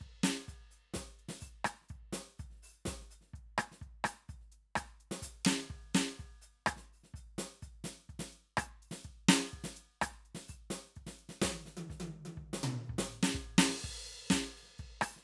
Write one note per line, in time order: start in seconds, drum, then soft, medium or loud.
0.01 kick soft
0.01 closed hi-hat soft
0.24 open hi-hat medium
0.24 snare medium
0.48 closed hi-hat soft
0.48 kick soft
0.48 snare soft
0.71 open hi-hat soft
0.94 open hi-hat medium
0.94 kick soft
0.94 snare medium
1.19 closed hi-hat soft
1.29 snare medium
1.40 open hi-hat medium
1.40 kick soft
1.65 open hi-hat medium
1.65 cross-stick medium
1.82 snare soft
1.89 kick soft
1.89 open hi-hat soft
2.13 closed hi-hat loud
2.13 snare medium
2.39 closed hi-hat soft
2.39 kick soft
2.51 snare soft
2.55 snare soft
2.63 open hi-hat medium
2.86 open hi-hat medium
2.86 kick soft
2.86 snare medium
3.01 snare soft
3.11 open hi-hat soft
3.22 snare soft
3.26 snare soft
3.34 kick soft
3.34 closed hi-hat soft
3.58 open hi-hat medium
3.58 cross-stick medium
3.72 snare soft
3.82 kick soft
3.82 closed hi-hat soft
4.04 open hi-hat medium
4.04 cross-stick medium
4.29 closed hi-hat soft
4.29 kick soft
4.41 snare soft
4.52 closed hi-hat soft
4.76 closed hi-hat medium
4.76 kick soft
4.76 cross-stick medium
5.00 open hi-hat soft
5.12 snare medium
5.22 closed hi-hat loud
5.22 kick soft
5.31 crash soft
5.45 snare loud
5.45 high tom loud
5.70 kick soft
5.94 closed hi-hat loud
5.94 snare loud
6.18 open hi-hat soft
6.18 kick soft
6.25 snare soft
6.42 closed hi-hat medium
6.67 closed hi-hat medium
6.67 kick soft
6.67 cross-stick medium
6.77 snare soft
6.93 open hi-hat soft
7.04 snare soft
7.14 closed hi-hat soft
7.14 kick soft
7.38 open hi-hat loud
7.38 snare medium
7.62 closed hi-hat soft
7.62 kick soft
7.84 closed hi-hat medium
7.84 snare medium
8.09 kick soft
8.09 closed hi-hat soft
8.20 snare medium
8.32 open hi-hat soft
8.57 open hi-hat medium
8.57 kick soft
8.57 cross-stick medium
8.82 open hi-hat soft
8.91 snare medium
9.04 kick soft
9.04 closed hi-hat medium
9.29 snare loud
9.53 kick soft
9.53 closed hi-hat soft
9.64 snare medium
9.76 open hi-hat medium
10.02 closed hi-hat loud
10.02 kick soft
10.02 cross-stick medium
10.25 closed hi-hat soft
10.35 snare medium
10.48 open hi-hat medium
10.48 kick soft
10.71 closed hi-hat medium
10.71 snare medium
10.85 snare soft
10.96 kick soft
10.96 closed hi-hat soft
11.07 snare medium
11.18 open hi-hat soft
11.29 snare soft
11.42 kick soft
11.42 snare loud
11.51 high tom medium
11.66 snare soft
11.77 high tom loud
11.90 kick soft
11.90 snare soft
12.00 high tom loud
12.25 high tom medium
12.37 kick soft
12.53 snare medium
12.63 mid tom loud
12.85 hi-hat pedal soft
12.90 kick soft
12.99 snare loud
13.23 snare medium
13.33 kick soft
13.33 hi-hat pedal soft
13.59 snare loud
13.59 crash loud
13.68 snare soft
13.83 closed hi-hat soft
13.83 kick soft
14.06 open hi-hat soft
14.30 closed hi-hat loud
14.30 kick soft
14.30 snare loud
14.42 snare soft
14.55 open hi-hat soft
14.63 snare soft
14.68 snare soft
14.72 snare soft
14.78 kick soft
14.78 open hi-hat soft
15.02 open hi-hat medium
15.02 cross-stick medium
15.17 snare soft